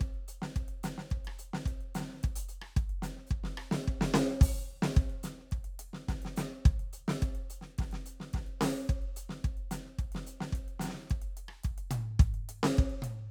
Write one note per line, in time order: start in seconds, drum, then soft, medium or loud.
0.01 kick medium
0.01 closed hi-hat soft
0.14 closed hi-hat soft
0.28 closed hi-hat medium
0.42 snare medium
0.56 kick medium
0.56 closed hi-hat soft
0.69 closed hi-hat soft
0.84 closed hi-hat medium
0.84 snare medium
0.98 snare medium
1.11 kick medium
1.11 closed hi-hat soft
1.25 cross-stick medium
1.25 closed hi-hat soft
1.39 closed hi-hat medium
1.54 snare medium
1.66 kick medium
1.66 closed hi-hat soft
1.81 closed hi-hat soft
1.95 closed hi-hat medium
1.95 snare medium
2.01 snare soft
2.09 snare soft
2.13 snare soft
2.17 snare soft
2.22 kick medium
2.22 snare soft
2.22 closed hi-hat soft
2.26 snare soft
2.30 snare soft
2.36 closed hi-hat medium
2.49 closed hi-hat soft
2.62 cross-stick medium
2.77 kick loud
2.77 closed hi-hat soft
2.90 closed hi-hat soft
3.03 open hi-hat medium
3.03 snare medium
3.18 snare soft
3.27 kick medium
3.27 hi-hat pedal soft
3.44 snare medium
3.58 cross-stick medium
3.72 snare loud
3.88 kick medium
4.01 snare loud
4.13 kick soft
4.13 snare loud
4.30 snare soft
4.41 open hi-hat loud
4.41 kick loud
4.83 snare loud
4.94 kick loud
4.94 hi-hat pedal soft
4.98 closed hi-hat soft
5.10 closed hi-hat soft
5.24 closed hi-hat medium
5.24 snare medium
5.39 snare soft
5.52 kick medium
5.52 closed hi-hat soft
5.65 closed hi-hat soft
5.80 closed hi-hat medium
5.94 snare soft
6.09 kick medium
6.09 snare medium
6.09 closed hi-hat soft
6.22 snare soft
6.22 closed hi-hat soft
6.34 open hi-hat medium
6.34 kick soft
6.34 snare medium
6.66 kick loud
6.66 closed hi-hat soft
6.80 closed hi-hat soft
6.93 closed hi-hat medium
7.08 snare loud
7.22 kick medium
7.22 closed hi-hat soft
7.35 closed hi-hat soft
7.50 closed hi-hat medium
7.62 snare soft
7.78 kick medium
7.78 snare soft
7.78 closed hi-hat soft
7.92 snare soft
7.92 closed hi-hat soft
8.06 closed hi-hat medium
8.06 kick soft
8.20 snare soft
8.34 kick medium
8.34 snare soft
8.34 closed hi-hat soft
8.47 closed hi-hat soft
8.59 open hi-hat medium
8.59 kick soft
8.59 snare medium
8.66 snare medium
8.86 kick medium
8.86 closed hi-hat soft
8.86 hi-hat pedal soft
9.02 closed hi-hat soft
9.17 closed hi-hat medium
9.30 snare medium
9.45 kick medium
9.45 closed hi-hat soft
9.57 closed hi-hat soft
9.71 closed hi-hat medium
9.71 snare medium
9.86 snare soft
9.99 kick medium
9.99 closed hi-hat soft
10.12 snare medium
10.12 closed hi-hat soft
10.27 closed hi-hat medium
10.41 snare medium
10.53 kick medium
10.53 closed hi-hat soft
10.68 closed hi-hat soft
10.80 closed hi-hat medium
10.80 snare medium
10.84 snare medium
10.89 snare medium
10.94 snare soft
11.00 snare soft
11.05 snare soft
11.10 kick medium
11.10 snare soft
11.10 closed hi-hat soft
11.22 closed hi-hat soft
11.37 closed hi-hat medium
11.49 cross-stick medium
11.64 kick medium
11.64 closed hi-hat medium
11.78 closed hi-hat soft
11.91 kick soft
11.91 closed hi-hat medium
11.91 high tom loud
12.20 kick loud
12.20 closed hi-hat soft
12.34 closed hi-hat soft
12.49 kick soft
12.49 closed hi-hat medium
12.63 snare loud
12.78 kick loud
12.78 closed hi-hat soft
12.90 closed hi-hat soft
13.02 kick soft
13.02 closed hi-hat medium
13.02 high tom loud